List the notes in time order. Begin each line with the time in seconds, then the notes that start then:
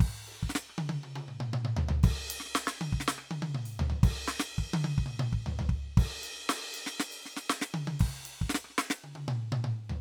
0.01 kick, crash
0.28 ride
0.43 kick
0.50 snare
0.56 snare
0.70 cross-stick
0.79 high tom
0.90 high tom
1.04 high tom
1.16 high tom
1.29 mid tom
1.41 mid tom
1.54 mid tom
1.66 mid tom
1.77 floor tom
1.89 floor tom
2.04 kick, ride
2.31 ride
2.41 snare
2.46 snare
2.56 snare
2.68 snare
2.82 high tom
2.93 kick
3.01 snare
3.09 snare
3.19 cross-stick
3.32 high tom
3.43 high tom
3.55 mid tom
3.66 closed hi-hat
3.80 floor tom
3.91 floor tom
4.04 kick, ride
4.28 snare
4.40 snare
4.59 kick
4.74 high tom
4.85 high tom
4.99 kick
5.07 mid tom
5.20 mid tom
5.33 kick
5.47 floor tom
5.60 floor tom
5.70 kick
5.95 kick, cross-stick, ride
6.24 ride
6.50 snare, ride
6.75 ride
6.87 snare
7.00 snare
7.11 open hi-hat
7.26 snare
7.37 snare
7.50 snare
7.62 snare
7.75 high tom
7.88 high tom
8.00 kick, crash
8.26 ride
8.42 kick
8.50 snare
8.55 snare
8.65 cross-stick
8.71 snare
8.79 snare
8.91 snare
9.04 high tom
9.16 high tom
9.29 mid tom
9.53 mid tom
9.65 mid tom
9.90 floor tom